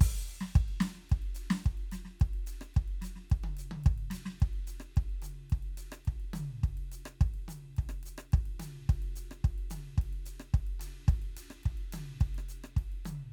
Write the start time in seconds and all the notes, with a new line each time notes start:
0.01 open hi-hat, kick, ride
0.32 ride
0.41 snare
0.55 kick, hi-hat pedal, ride
0.69 ride
0.81 snare, ride
0.95 snare
1.10 kick, ride
1.23 ride
1.35 hi-hat pedal, ride
1.51 snare
1.65 kick, ride
1.78 ride
1.92 snare, hi-hat pedal, ride
2.05 snare
2.20 kick, ride
2.31 snare, ride
2.47 hi-hat pedal, ride
2.62 cross-stick
2.75 kick, ride
2.88 ride
3.02 snare, hi-hat pedal, ride
3.16 snare
3.31 kick, ride
3.44 high tom, ride
3.58 hi-hat pedal, ride
3.72 high tom
3.84 kick, ride
3.98 ride
4.11 snare, hi-hat pedal, ride
4.26 snare
4.41 kick, ride
4.54 ride
4.68 hi-hat pedal, ride
4.80 cross-stick
4.97 kick, ride
5.10 ride
5.22 hi-hat pedal, high tom, ride
5.50 kick, ride
5.63 ride
5.78 hi-hat pedal, ride
5.92 cross-stick
6.06 kick, ride
6.20 ride
6.34 hi-hat pedal, high tom, ride
6.64 kick, ride
6.78 ride
6.92 hi-hat pedal, ride
7.06 cross-stick
7.21 kick, ride
7.34 ride
7.49 hi-hat pedal, high tom, ride
7.77 kick, ride
7.90 cross-stick, ride
8.04 hi-hat pedal, ride
8.19 cross-stick
8.33 kick, ride
8.46 ride
8.60 hi-hat pedal, high tom, ride
8.90 kick, ride
9.03 ride
9.16 hi-hat pedal, ride
9.32 cross-stick
9.45 kick, ride
9.59 ride
9.71 hi-hat pedal, high tom, ride
9.98 kick, ride
10.13 ride
10.26 hi-hat pedal, ride
10.40 cross-stick
10.54 kick, ride
10.67 ride
10.80 hi-hat pedal, high tom, ride
11.09 kick, ride
11.22 ride
11.37 hi-hat pedal, ride
11.51 cross-stick
11.64 kick, ride
11.78 ride
11.93 hi-hat pedal, high tom, ride
12.21 kick, ride
12.35 cross-stick, ride
12.49 hi-hat pedal, ride
12.64 cross-stick
12.77 kick, ride
12.92 ride
13.06 hi-hat pedal, high tom, ride